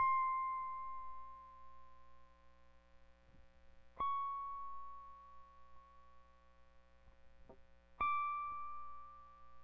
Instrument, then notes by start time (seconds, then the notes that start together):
electric guitar
0.00 C6
4.01 C#6
4.21 C#6
8.01 D6